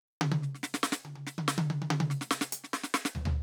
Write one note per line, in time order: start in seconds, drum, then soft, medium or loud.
0.21 high tom loud
0.32 high tom loud
0.43 snare soft
0.55 snare soft
0.63 snare loud
0.74 snare loud
0.83 snare loud
0.92 snare loud
1.05 high tom medium
1.16 high tom soft
1.27 snare medium
1.38 high tom loud
1.48 snare loud
1.58 high tom loud
1.70 high tom medium
1.82 high tom medium
1.90 high tom loud
2.00 high tom loud
2.10 snare medium
2.21 snare medium
2.31 snare loud
2.41 snare loud
2.52 closed hi-hat loud
2.64 snare medium
2.73 snare loud
2.84 snare loud
2.94 snare loud
3.05 snare loud
3.15 floor tom medium
3.25 floor tom loud